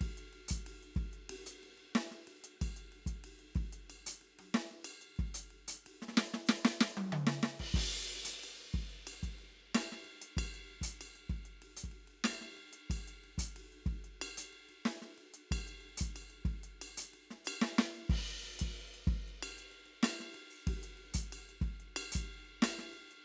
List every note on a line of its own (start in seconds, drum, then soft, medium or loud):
0.01 kick medium
0.01 cross-stick soft
0.01 ride medium
0.17 closed hi-hat medium
0.33 ride soft
0.48 closed hi-hat loud
0.48 kick soft
0.67 ride medium
0.83 closed hi-hat soft
0.95 kick medium
0.95 ride soft
1.13 closed hi-hat soft
1.30 ride loud
1.46 closed hi-hat medium
1.63 ride soft
1.78 ride soft
1.95 snare loud
1.95 ride medium
1.95 floor tom soft
2.11 snare soft
2.27 ride medium
2.44 closed hi-hat medium
2.62 kick medium
2.62 ride bell medium
2.76 closed hi-hat medium
2.92 ride soft
3.06 kick soft
3.06 closed hi-hat medium
3.24 ride medium
3.39 closed hi-hat soft
3.55 kick medium
3.55 ride soft
3.73 closed hi-hat medium
3.90 cross-stick soft
3.90 ride bell medium
4.06 closed hi-hat loud
4.22 ride soft
4.39 cross-stick soft
4.39 high tom soft
4.39 ride medium
4.39 floor tom soft
4.43 hi-hat pedal soft
4.54 snare loud
4.71 snare soft
4.85 ride bell medium
5.01 closed hi-hat medium
5.16 kick medium
5.16 ride soft
5.34 closed hi-hat loud
5.51 ride soft
5.68 closed hi-hat loud
5.86 ride medium
6.02 snare soft
6.08 snare soft
6.13 snare soft
6.17 snare loud
6.34 snare medium
6.46 snare loud
6.46 hi-hat pedal medium
6.65 snare loud
6.81 snare loud
6.97 high tom loud
7.12 mid tom loud
7.27 snare loud
7.43 snare loud
7.60 kick soft
7.60 crash medium
7.74 kick medium
7.74 ride loud
7.94 closed hi-hat soft
8.08 ride soft
8.25 closed hi-hat loud
8.44 ride bell medium
8.59 closed hi-hat soft
8.73 kick medium
8.73 ride soft
8.90 closed hi-hat soft
9.07 ride bell medium
9.23 kick soft
9.23 closed hi-hat medium
9.39 ride soft
9.75 snare loud
9.75 ride bell loud
9.92 snare soft
10.05 ride soft
10.22 closed hi-hat medium
10.37 kick medium
10.37 ride bell loud
10.54 closed hi-hat soft
10.68 ride soft
10.82 closed hi-hat loud
10.82 kick soft
11.01 ride bell medium
11.16 closed hi-hat soft
11.30 kick soft
11.30 ride soft
11.45 closed hi-hat soft
11.62 cross-stick soft
11.62 ride medium
11.77 closed hi-hat medium
11.84 kick soft
11.92 ride soft
12.08 ride soft
12.24 snare loud
12.24 ride bell loud
12.41 snare soft
12.57 ride soft
12.73 closed hi-hat medium
12.90 kick medium
12.90 ride bell medium
13.08 closed hi-hat medium
13.24 ride soft
13.38 closed hi-hat loud
13.38 kick soft
13.56 ride medium
13.72 closed hi-hat soft
13.86 kick medium
13.86 ride soft
14.04 closed hi-hat soft
14.22 ride bell loud
14.37 closed hi-hat loud
14.53 ride soft
14.69 ride soft
14.85 snare medium
14.85 ride medium
15.02 snare soft
15.18 ride soft
15.34 closed hi-hat medium
15.51 kick medium
15.51 ride bell loud
15.67 closed hi-hat medium
15.81 ride soft
15.97 closed hi-hat loud
15.97 kick medium
16.16 ride bell medium
16.30 closed hi-hat soft
16.45 kick medium
16.45 ride soft
16.63 closed hi-hat medium
16.82 ride bell medium
16.97 closed hi-hat loud
17.14 ride soft
17.31 snare soft
17.45 hi-hat pedal loud
17.45 ride bell loud
17.62 snare loud
17.78 snare loud
17.95 closed hi-hat soft
18.10 kick medium
18.10 crash medium
18.26 closed hi-hat soft
18.43 ride soft
18.59 kick medium
18.59 closed hi-hat loud
18.77 ride soft
18.94 closed hi-hat soft
19.07 kick medium
19.28 closed hi-hat soft
19.43 ride bell loud
19.58 closed hi-hat medium
19.72 ride soft
19.86 ride soft
20.03 snare loud
20.03 ride bell loud
20.20 snare soft
20.35 ride medium
20.51 open hi-hat medium
20.63 hi-hat pedal soft
20.67 kick medium
20.67 ride medium
20.83 closed hi-hat medium
20.97 ride soft
21.14 closed hi-hat loud
21.14 kick medium
21.33 ride bell medium
21.49 closed hi-hat soft
21.62 kick medium
21.62 ride soft
21.80 closed hi-hat soft
21.96 ride bell loud
22.12 closed hi-hat loud
22.12 kick medium
22.27 ride soft
22.45 ride soft
22.62 snare loud
22.62 ride bell loud
22.79 snare soft
22.94 ride soft
23.11 closed hi-hat soft